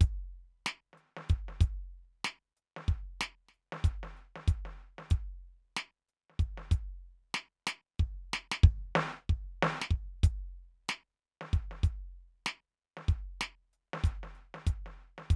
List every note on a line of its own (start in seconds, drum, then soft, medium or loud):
0.01 closed hi-hat loud
0.01 kick medium
0.66 closed hi-hat loud
0.66 snare loud
0.93 snare soft
0.98 closed hi-hat soft
1.17 snare soft
1.29 closed hi-hat medium
1.29 kick medium
1.49 snare soft
1.61 closed hi-hat medium
1.61 kick medium
2.25 closed hi-hat medium
2.25 snare loud
2.57 closed hi-hat soft
2.77 snare soft
2.88 kick medium
2.88 closed hi-hat soft
3.21 closed hi-hat loud
3.21 snare loud
3.49 snare soft
3.54 closed hi-hat soft
3.72 snare medium
3.84 closed hi-hat medium
3.84 kick medium
4.03 snare soft
4.17 closed hi-hat soft
4.36 snare soft
4.48 closed hi-hat medium
4.48 kick medium
4.65 snare soft
4.71 snare soft
4.78 closed hi-hat soft
4.99 snare soft
5.11 closed hi-hat medium
5.11 kick medium
5.77 closed hi-hat medium
5.77 snare loud
6.09 closed hi-hat soft
6.30 snare soft
6.39 closed hi-hat soft
6.39 kick medium
6.58 snare soft
6.72 closed hi-hat medium
6.72 kick medium
7.34 snare loud
7.67 closed hi-hat loud
7.67 snare loud
7.99 kick medium
7.99 hi-hat pedal soft
8.34 snare loud
8.52 snare loud
8.64 kick loud
8.95 snare loud
9.30 kick medium
9.63 snare loud
9.82 snare loud
9.91 kick medium
10.24 closed hi-hat loud
10.24 kick medium
10.89 closed hi-hat loud
10.89 snare loud
11.41 snare soft
11.53 kick medium
11.53 closed hi-hat soft
11.71 snare soft
11.84 closed hi-hat medium
11.84 kick medium
12.46 closed hi-hat medium
12.46 snare loud
12.97 snare soft
13.09 kick medium
13.09 closed hi-hat soft
13.41 closed hi-hat medium
13.41 snare loud
13.73 closed hi-hat soft
13.94 snare medium
14.04 closed hi-hat medium
14.04 kick medium
14.23 snare soft
14.35 closed hi-hat soft
14.54 snare soft
14.67 closed hi-hat loud
14.67 kick medium
14.86 snare soft
15.18 snare soft
15.30 closed hi-hat medium
15.30 kick medium